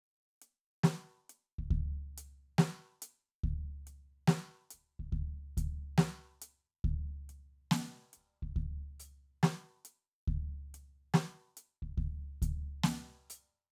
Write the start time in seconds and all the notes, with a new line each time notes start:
0.42 closed hi-hat
0.83 snare
1.29 closed hi-hat
1.58 kick
1.71 kick
2.18 closed hi-hat
2.58 snare
3.02 closed hi-hat
3.44 kick, crash
3.87 closed hi-hat
4.28 snare
4.71 kick, closed hi-hat
4.99 kick
5.12 kick
5.17 crash
5.57 kick, closed hi-hat
5.98 snare
6.42 closed hi-hat
6.84 kick, crash
7.29 closed hi-hat
7.71 snare
8.13 kick, closed hi-hat
8.42 kick
8.56 kick
8.61 ride
9.00 closed hi-hat
9.43 snare
9.85 closed hi-hat
10.28 kick, crash
10.74 closed hi-hat
11.14 snare
11.57 closed hi-hat
11.82 kick
11.98 kick
12.02 crash, ride
12.42 kick, closed hi-hat
12.84 snare
13.30 closed hi-hat